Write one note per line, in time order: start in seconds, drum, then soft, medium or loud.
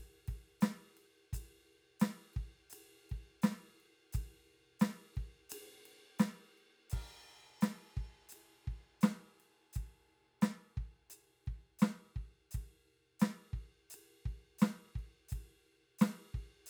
0.29 kick soft
0.29 ride soft
0.62 snare medium
0.62 hi-hat pedal medium
0.62 ride medium
0.98 ride soft
1.34 kick soft
1.34 hi-hat pedal medium
1.34 ride medium
2.01 snare medium
2.01 hi-hat pedal medium
2.01 ride medium
2.35 kick soft
2.35 ride soft
2.71 hi-hat pedal medium
2.71 ride medium
3.11 kick soft
3.11 ride soft
3.43 snare medium
3.43 hi-hat pedal medium
3.43 ride medium
3.53 snare soft
3.81 ride soft
4.14 kick medium
4.14 hi-hat pedal medium
4.14 ride medium
4.47 ride soft
4.81 snare loud
4.81 hi-hat pedal medium
4.81 ride medium
5.17 kick soft
5.17 ride soft
5.51 hi-hat pedal medium
5.51 ride medium
5.87 ride soft
6.20 snare loud
6.20 hi-hat pedal medium
6.20 ride medium
6.59 ride soft
6.91 kick medium
6.91 hi-hat pedal medium
6.91 crash soft
7.62 snare medium
7.62 hi-hat pedal medium
7.62 ride medium
7.98 kick soft
8.30 hi-hat pedal medium
8.30 ride medium
8.69 kick soft
9.02 snare loud
9.02 hi-hat pedal medium
9.02 ride soft
9.41 ride soft
9.74 kick soft
9.74 hi-hat pedal medium
9.74 ride soft
10.43 snare medium
10.43 hi-hat pedal medium
10.43 ride soft
10.78 kick soft
11.11 hi-hat pedal medium
11.11 ride soft
11.48 kick soft
11.48 ride soft
11.80 snare loud
11.80 hi-hat pedal medium
11.80 ride soft
12.17 kick soft
12.52 kick soft
12.52 hi-hat pedal medium
12.52 ride soft
13.21 snare medium
13.21 hi-hat pedal medium
13.21 ride medium
13.54 kick soft
13.91 hi-hat pedal medium
13.95 ride medium
14.27 kick soft
14.27 ride soft
14.60 snare loud
14.60 hi-hat pedal medium
14.60 ride medium
14.97 kick soft
14.97 ride soft
15.30 kick soft
15.30 hi-hat pedal medium
15.34 ride soft
16.00 snare loud
16.00 hi-hat pedal medium
16.00 ride medium
16.35 kick soft
16.67 hi-hat pedal medium